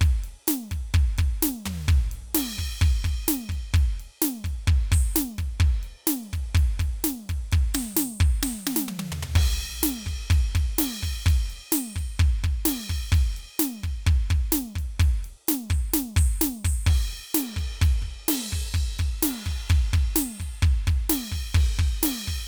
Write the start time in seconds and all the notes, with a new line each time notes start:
0.01 kick, ride
0.24 ride
0.47 snare, ride
0.71 kick, ride
0.94 kick, ride
1.18 kick, ride
1.42 snare, ride
1.66 floor tom, high tom
1.88 kick, ride
2.12 ride
2.35 snare, crash
2.58 kick, ride
2.81 kick, ride
3.04 kick, ride
3.28 snare, ride
3.49 kick, ride
3.74 kick, ride
4.00 ride
4.22 snare, ride
4.44 kick, ride
4.67 kick, ride
4.92 open hi-hat, kick, ride
5.15 snare, hi-hat pedal
5.38 kick, ride
5.60 kick, ride
5.83 ride
6.07 snare, ride
6.33 kick, ride
6.55 kick, ride
6.79 kick, ride
7.04 snare, ride
7.29 kick, ride
7.52 kick, ride
7.74 open hi-hat, snare
7.93 open hi-hat, kick, snare
8.20 kick
8.43 open hi-hat, snare
8.67 snare
8.76 snare
8.88 high tom
8.99 high tom
9.12 floor tom
9.23 floor tom
9.31 kick
9.35 kick, crash
9.83 snare, ride
10.06 kick, ride
10.30 kick, ride
10.55 kick, ride
10.78 snare, crash
11.03 kick, ride
11.26 kick, ride
11.50 ride
11.72 open hi-hat, snare
11.96 kick, ride
12.19 kick, ride
12.44 kick, ride
12.65 snare, crash
12.89 kick, ride
13.12 kick, ride
13.37 ride
13.59 snare, hi-hat pedal, ride
13.83 kick, ride
14.07 kick, ride
14.30 kick, ride
14.52 snare, ride
14.75 kick, ride
15.00 kick, ride
15.24 ride
15.48 snare, ride
15.70 open hi-hat, kick
15.94 snare
16.16 open hi-hat, kick
16.41 snare
16.65 open hi-hat, kick
16.86 kick, crash
17.13 ride
17.31 snare, hi-hat pedal
17.35 ride
17.56 kick, ride
17.81 kick, ride
18.02 kick
18.28 snare, crash
18.35 snare
18.52 kick, ride
18.74 kick, ride
18.95 snare, ride
18.99 kick
19.23 snare, crash
19.46 kick, ride
19.70 kick, ride
19.93 kick, ride
20.16 open hi-hat, snare
20.40 kick, ride
20.62 kick, ride
20.87 kick, ride
21.09 snare, crash
21.32 kick
21.54 kick, crash
21.79 kick
22.03 snare, crash
22.27 kick